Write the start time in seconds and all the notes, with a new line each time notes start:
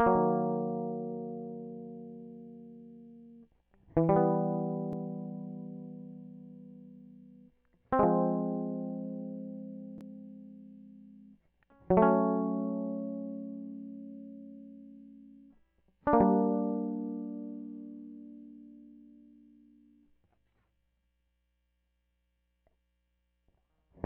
0.00 A#3
0.07 F#3
0.16 D#3
3.97 E3
4.09 G3
4.16 B3
7.93 C4
8.00 G#3
8.04 F3
11.91 F#3
11.97 A3
12.02 C#4
16.07 D4
16.13 A#3
16.21 G3